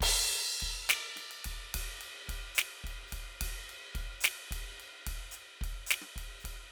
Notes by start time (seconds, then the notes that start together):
0.01 kick, crash
0.60 kick, ride
0.89 snare, hi-hat pedal, ride bell
1.16 snare, hi-hat pedal, ride
1.31 ride
1.45 kick, ride
1.74 kick, ride
1.80 kick
2.01 ride
2.26 kick, snare, ride
2.31 snare
2.55 snare, hi-hat pedal, ride
2.84 kick, ride
3.03 snare
3.07 snare, hi-hat pedal
3.12 kick, ride
3.41 kick, ride
3.48 kick
3.69 ride
3.95 kick, ride
4.01 kick
4.21 snare, hi-hat pedal, ride
4.51 kick, ride
4.72 snare
4.77 snare, ride
5.07 kick, ride
5.31 hi-hat pedal, ride
5.61 kick, ride
5.68 kick
5.87 hi-hat pedal
5.91 snare, ride
6.02 snare
6.16 kick, ride
6.38 snare, hi-hat pedal
6.44 kick, ride